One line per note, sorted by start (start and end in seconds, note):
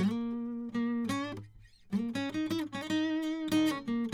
0.01 0.48 A#3
0.76 1.10 A#3
1.10 1.25 C#4
1.94 2.15 A#3
2.16 2.32 C#4
2.36 2.50 D#4
2.52 2.70 E4
2.76 2.87 C#4
2.91 3.33 D#4
3.53 3.68 D#4
3.58 3.82 D3
3.68 3.84 C#4
3.89 4.10 A#3